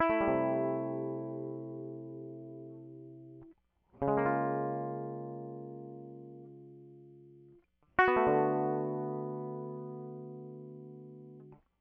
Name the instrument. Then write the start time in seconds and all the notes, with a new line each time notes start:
electric guitar
0.00 E4
0.10 A3
0.21 G3
0.28 C3
4.03 C#3
4.08 G#3
4.17 A#3
4.26 F4
7.99 F#4
8.08 B3
8.17 A3
8.28 D3